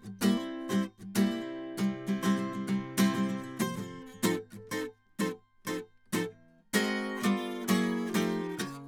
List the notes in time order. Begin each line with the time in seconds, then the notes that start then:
0.07 G3
0.23 C3 G3 A#3 E4 G4 C5
0.39 C4
0.71 B2 G3 C4 E4 G4 C5
1.03 G3
1.17 C3 G3 A#3 E4 G4 C5
1.43 C4
1.79 C3 G3 C4
2.09 G3 C4 E4 C5
2.24 C3 G3 C4 E4 C5
2.40 C4 E4
2.55 G3 C4 E4
2.69 C3 G3 C4
2.99 C3 G3 C4 E4 C5
3.14 G3 C4 E4 C5
3.19 C3
3.31 C4 E4
3.43 E4 C5
3.61 C3 F3 A#3 C5
3.77 C3 C4 A4 C5
3.81 F3
4.25 F3 C4 D#4 A4 C5
4.57 A4 C5
4.73 C4 D#4 A4 C5
5.20 F3 C4 D#4 A4 C5
5.68 F3 C4 D#4 A4 C5
6.15 F3 C4 D#4 A4 C5
6.75 G#3 C4 F#4 A#4 D#5
7.25 G3 B3 F4 A4 D5
7.70 F#3 A#3 E4 G#4 C#5
8.16 F3 A3 D#4 G4 C5
8.60 C#3 F#3